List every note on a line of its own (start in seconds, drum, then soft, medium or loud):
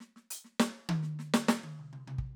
0.00 snare soft
0.16 snare soft
0.30 closed hi-hat loud
0.44 snare soft
0.60 snare loud
0.74 snare soft
0.89 high tom loud
1.03 snare soft
1.19 snare soft
1.34 snare loud
1.48 snare loud
1.63 high tom medium
1.79 mid tom soft
1.93 mid tom medium
2.08 mid tom medium
2.18 kick soft